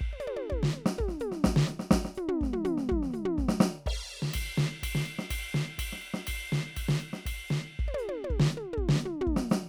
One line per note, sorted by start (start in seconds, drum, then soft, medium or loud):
0.01 kick soft
0.08 kick soft
0.13 high tom soft
0.20 hi-hat pedal medium
0.20 high tom loud
0.27 high tom loud
0.36 high tom medium
0.50 kick soft
0.50 high tom loud
0.58 kick soft
0.63 snare loud
0.70 hi-hat pedal medium
0.70 high tom soft
0.86 snare medium
0.98 kick soft
0.98 mid tom loud
1.07 kick soft
1.07 snare soft
1.20 hi-hat pedal medium
1.20 mid tom loud
1.32 snare soft
1.44 kick soft
1.44 snare loud
1.52 kick soft
1.56 snare loud
1.67 snare soft
1.67 hi-hat pedal medium
1.80 snare medium
1.91 kick soft
1.91 snare loud
1.99 kick soft
2.05 snare soft
2.15 floor tom loud
2.15 hi-hat pedal medium
2.28 floor tom loud
2.41 kick soft
2.41 snare soft
2.47 kick soft
2.53 floor tom loud
2.65 hi-hat pedal medium
2.65 floor tom loud
2.78 snare soft
2.89 kick soft
2.89 floor tom loud
3.03 snare soft
3.10 snare soft
3.10 hi-hat pedal medium
3.10 floor tom medium
3.25 floor tom loud
3.38 kick soft
3.38 snare soft
3.45 kick soft
3.49 snare medium
3.61 snare loud
3.61 hi-hat pedal medium
3.86 kick soft
3.86 crash loud
3.97 kick soft
4.07 hi-hat pedal medium
4.22 snare medium
4.34 kick soft
4.34 ride bell loud
4.42 kick soft
4.55 snare loud
4.55 hi-hat pedal medium
4.83 kick soft
4.83 ride bell loud
4.89 kick soft
4.95 snare medium
5.03 hi-hat pedal medium
5.03 ride soft
5.19 snare medium
5.31 kick soft
5.31 ride bell loud
5.37 kick soft
5.50 hi-hat pedal medium
5.55 snare medium
5.79 kick soft
5.79 ride bell loud
5.85 kick soft
5.93 snare soft
5.98 hi-hat pedal medium
5.98 ride soft
6.14 snare medium
6.27 kick soft
6.27 ride bell loud
6.47 hi-hat pedal medium
6.53 snare medium
6.77 kick soft
6.77 ride bell loud
6.83 kick soft
6.89 snare loud
6.96 hi-hat pedal medium
7.00 ride soft
7.13 snare medium
7.26 kick soft
7.26 ride bell loud
7.32 kick soft
7.47 snare medium
7.47 hi-hat pedal medium
7.79 kick soft
7.86 kick soft
7.86 high tom medium
7.94 high tom loud
7.99 hi-hat pedal medium
8.09 high tom loud
8.24 high tom loud
8.30 kick soft
8.37 kick soft
8.37 snare loud
8.47 snare soft
8.47 hi-hat pedal medium
8.57 mid tom medium
8.73 mid tom loud
8.78 kick soft
8.84 kick soft
8.89 snare loud
8.96 snare soft
8.96 hi-hat pedal medium
9.05 floor tom loud
9.21 floor tom loud
9.27 kick soft
9.34 kick soft
9.34 snare medium
9.50 snare loud
9.50 hi-hat pedal medium